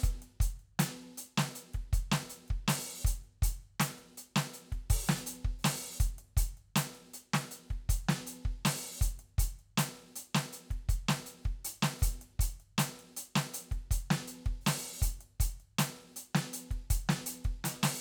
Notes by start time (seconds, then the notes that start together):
0.01 closed hi-hat, kick, hi-hat pedal
0.22 closed hi-hat
0.40 closed hi-hat, kick
0.59 closed hi-hat
0.79 closed hi-hat, snare
1.18 closed hi-hat
1.38 snare, closed hi-hat
1.42 snare
1.55 closed hi-hat
1.74 kick, closed hi-hat
1.93 closed hi-hat, kick
2.12 snare
2.30 closed hi-hat
2.48 kick, closed hi-hat
2.68 open hi-hat, snare
3.03 closed hi-hat, kick, hi-hat pedal
3.24 closed hi-hat
3.42 closed hi-hat, kick
3.62 closed hi-hat
3.80 closed hi-hat, snare
3.98 closed hi-hat
4.17 closed hi-hat
4.36 snare, closed hi-hat
4.54 closed hi-hat
4.72 kick, closed hi-hat
4.90 open hi-hat, kick
5.09 snare
5.19 hi-hat pedal
5.26 closed hi-hat
5.45 kick
5.59 hi-hat pedal
5.64 open hi-hat, snare
5.97 closed hi-hat, kick, hi-hat pedal
6.18 closed hi-hat
6.37 closed hi-hat, kick
6.57 closed hi-hat
6.76 closed hi-hat, snare
6.95 closed hi-hat
7.14 closed hi-hat
7.33 snare
7.51 closed hi-hat
7.70 kick, closed hi-hat
7.89 closed hi-hat, kick
8.09 snare
8.27 closed hi-hat
8.45 kick, closed hi-hat
8.65 open hi-hat, snare
9.00 closed hi-hat, kick, hi-hat pedal
9.19 closed hi-hat
9.38 closed hi-hat, kick
9.59 closed hi-hat
9.78 closed hi-hat, snare
9.97 closed hi-hat
10.16 closed hi-hat
10.35 snare
10.53 closed hi-hat
10.70 kick, closed hi-hat
10.89 closed hi-hat, kick
11.08 snare
11.26 closed hi-hat
11.45 kick, closed hi-hat
11.65 open hi-hat
11.82 snare
11.99 closed hi-hat, kick, hi-hat pedal
12.21 closed hi-hat
12.39 closed hi-hat, kick
12.60 closed hi-hat
12.78 closed hi-hat, snare
12.99 closed hi-hat
13.17 closed hi-hat
13.35 snare, closed hi-hat
13.54 closed hi-hat
13.71 kick, closed hi-hat
13.91 closed hi-hat, kick
14.10 snare
14.28 closed hi-hat
14.46 kick, closed hi-hat
14.61 hi-hat pedal
14.66 open hi-hat, snare
15.01 closed hi-hat, kick, hi-hat pedal
15.21 closed hi-hat
15.40 closed hi-hat, kick
15.60 closed hi-hat
15.78 closed hi-hat, snare
16.16 closed hi-hat
16.35 snare, closed hi-hat
16.53 closed hi-hat
16.71 kick, closed hi-hat
16.90 closed hi-hat, kick
17.09 snare, closed hi-hat
17.26 closed hi-hat
17.44 kick, closed hi-hat
17.64 closed hi-hat, snare
17.83 open hi-hat, snare